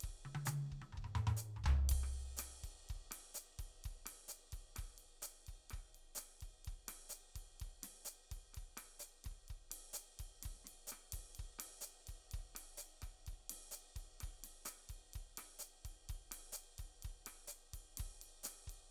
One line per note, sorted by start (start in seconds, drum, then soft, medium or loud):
0.01 kick soft
0.01 ride medium
0.09 kick soft
0.25 high tom soft
0.35 high tom medium
0.46 hi-hat pedal medium
0.46 high tom medium
0.61 high tom soft
0.72 kick soft
0.72 high tom soft
0.82 high tom soft
0.93 mid tom soft
0.98 kick soft
1.03 kick soft
1.03 mid tom soft
1.16 mid tom medium
1.27 mid tom loud
1.37 hi-hat pedal medium
1.57 floor tom soft
1.64 kick soft
1.64 floor tom loud
1.70 kick soft
1.90 kick soft
1.90 ride loud
1.98 kick soft
2.04 cross-stick soft
2.37 cross-stick soft
2.37 snare soft
2.37 hi-hat pedal medium
2.37 ride medium
2.64 kick soft
2.64 ride soft
2.89 kick soft
2.89 ride soft
2.96 kick soft
3.12 cross-stick soft
3.12 ride medium
3.35 hi-hat pedal medium
3.35 ride soft
3.59 kick soft
3.59 ride soft
3.85 kick soft
3.85 ride soft
3.91 kick soft
4.06 cross-stick soft
4.06 ride medium
4.29 hi-hat pedal medium
4.29 ride soft
4.53 kick soft
4.53 ride soft
4.76 kick soft
4.76 cross-stick soft
4.76 snare soft
4.76 ride medium
4.84 kick soft
4.98 ride soft
5.23 cross-stick soft
5.23 hi-hat pedal medium
5.23 ride medium
5.47 kick soft
5.47 ride soft
5.70 kick soft
5.70 cross-stick soft
5.70 snare soft
5.70 ride soft
5.79 kick soft
5.95 ride soft
6.16 cross-stick soft
6.16 snare soft
6.16 hi-hat pedal medium
6.16 ride medium
6.41 kick soft
6.41 ride soft
6.65 kick soft
6.65 ride soft
6.73 kick soft
6.88 cross-stick soft
6.88 snare soft
6.88 ride medium
7.10 hi-hat pedal medium
7.10 ride soft
7.36 kick soft
7.36 ride soft
7.60 kick soft
7.60 ride soft
7.67 kick soft
7.83 snare soft
7.83 ride medium
8.05 hi-hat pedal medium
8.05 ride soft
8.32 kick soft
8.32 ride soft
8.37 kick soft
8.54 kick soft
8.54 cross-stick soft
8.54 ride soft
8.63 kick soft
8.78 cross-stick soft
8.78 ride medium
9.00 hi-hat pedal medium
9.00 ride soft
9.25 kick soft
9.25 snare soft
9.25 ride soft
9.31 kick soft
9.49 kick soft
9.49 ride soft
9.71 cross-stick soft
9.71 ride medium
9.94 hi-hat pedal medium
9.94 ride soft
10.20 kick soft
10.20 ride soft
10.43 kick soft
10.43 snare soft
10.43 ride medium
10.51 kick soft
10.51 snare soft
10.65 snare soft
10.65 ride soft
10.88 hi-hat pedal medium
10.88 ride soft
10.92 cross-stick soft
10.92 snare soft
11.13 kick soft
11.13 ride medium
11.19 kick soft
11.35 ride soft
11.40 kick soft
11.44 kick soft
11.59 cross-stick soft
11.59 ride medium
11.81 hi-hat pedal medium
11.81 ride soft
12.08 kick soft
12.08 ride soft
12.32 kick soft
12.32 ride soft
12.39 kick soft
12.56 cross-stick soft
12.56 ride medium
12.78 hi-hat pedal medium
12.78 ride soft
13.02 kick soft
13.02 cross-stick soft
13.02 snare soft
13.02 ride soft
13.27 kick soft
13.27 ride soft
13.33 kick soft
13.40 snare soft
13.50 snare soft
13.50 ride medium
13.72 hi-hat pedal medium
13.72 ride soft
13.96 kick soft
13.96 ride soft
14.21 kick soft
14.21 cross-stick soft
14.21 snare soft
14.21 ride soft
14.29 kick soft
14.44 snare soft
14.44 ride medium
14.66 cross-stick soft
14.66 hi-hat pedal medium
14.66 ride medium
14.90 kick soft
14.90 ride soft
15.14 kick soft
15.14 ride soft
15.21 kick soft
15.38 cross-stick soft
15.38 ride medium
15.59 hi-hat pedal medium
15.59 ride soft
15.85 kick soft
15.85 ride soft
16.10 kick soft
16.10 ride soft
16.15 kick soft
16.32 cross-stick soft
16.32 ride medium
16.53 hi-hat pedal medium
16.53 ride soft
16.79 kick soft
16.79 ride soft
16.85 kick soft
17.03 kick soft
17.03 ride soft
17.10 kick soft
17.27 cross-stick soft
17.27 ride medium
17.48 hi-hat pedal medium
17.48 ride soft
17.74 kick soft
17.74 ride soft
17.98 kick soft
17.98 snare soft
17.98 ride medium
18.05 kick soft
18.22 ride soft
18.44 cross-stick soft
18.44 snare soft
18.44 hi-hat pedal medium
18.44 ride medium
18.68 kick soft
18.68 ride soft